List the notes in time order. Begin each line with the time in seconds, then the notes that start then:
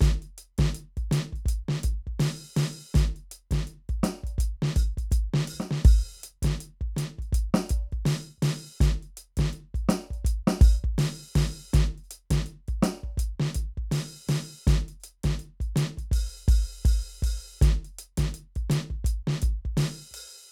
0.01 open hi-hat, kick, snare, hi-hat pedal
0.22 closed hi-hat
0.38 closed hi-hat
0.58 kick, snare, closed hi-hat
0.75 closed hi-hat
0.97 kick, closed hi-hat
1.12 closed hi-hat, snare
1.33 kick, closed hi-hat
1.46 closed hi-hat, kick
1.69 snare
1.84 closed hi-hat, kick
2.07 kick
2.20 open hi-hat, snare, hi-hat pedal
2.57 open hi-hat, snare
2.95 open hi-hat, kick, snare, hi-hat pedal
3.16 closed hi-hat
3.32 closed hi-hat
3.51 kick, snare, closed hi-hat
3.67 closed hi-hat
3.89 kick, closed hi-hat
4.04 closed hi-hat, snare
4.24 kick, closed hi-hat
4.39 closed hi-hat, kick
4.62 snare
4.76 open hi-hat, kick, hi-hat pedal
4.98 kick, closed hi-hat
5.11 closed hi-hat, kick, hi-hat pedal
5.34 snare
5.48 open hi-hat
5.54 kick, hi-hat pedal
5.60 snare
5.71 snare
5.85 open hi-hat, kick
6.22 closed hi-hat, hi-hat pedal
6.43 kick, snare, closed hi-hat
6.61 closed hi-hat
6.81 kick
6.97 closed hi-hat, snare
7.19 kick, closed hi-hat
7.33 closed hi-hat, kick
7.54 snare
7.70 closed hi-hat, kick
7.92 kick, closed hi-hat
8.06 open hi-hat, snare, hi-hat pedal
8.38 kick
8.43 open hi-hat, snare
8.81 open hi-hat, kick, snare, hi-hat pedal
9.03 closed hi-hat
9.17 closed hi-hat
9.37 kick, snare, closed hi-hat
9.53 closed hi-hat
9.75 kick, closed hi-hat
9.89 closed hi-hat, snare
10.11 kick, closed hi-hat
10.25 closed hi-hat, kick
10.48 snare
10.61 open hi-hat, kick
10.73 hi-hat pedal
10.84 kick
10.95 kick, snare
10.99 open hi-hat
11.36 open hi-hat, kick, snare
11.73 closed hi-hat, kick, snare, hi-hat pedal
11.98 closed hi-hat
12.04 hi-hat pedal
12.11 closed hi-hat
12.31 closed hi-hat, kick, snare
12.46 closed hi-hat
12.68 kick, closed hi-hat
12.83 closed hi-hat, snare
13.04 kick
13.18 closed hi-hat, kick
13.40 snare
13.55 closed hi-hat, kick
13.78 kick
13.92 open hi-hat, snare
14.28 open hi-hat, kick, snare
14.67 open hi-hat, kick, snare, hi-hat pedal
14.89 closed hi-hat
15.00 open hi-hat, hi-hat pedal
15.24 kick, snare, closed hi-hat
15.40 closed hi-hat
15.61 kick, closed hi-hat
15.76 closed hi-hat, snare
15.98 kick, closed hi-hat
16.12 open hi-hat, kick
16.48 open hi-hat, kick
16.85 open hi-hat, kick
17.23 open hi-hat, kick
17.62 closed hi-hat, kick, snare, hi-hat pedal
17.85 closed hi-hat
17.93 hi-hat pedal
17.99 closed hi-hat
18.18 kick, snare, closed hi-hat
18.34 closed hi-hat
18.56 kick, closed hi-hat
18.70 closed hi-hat, snare
18.91 kick
19.05 closed hi-hat, kick
19.28 snare
19.42 closed hi-hat, kick
19.65 kick
19.77 open hi-hat, snare
20.11 open hi-hat, kick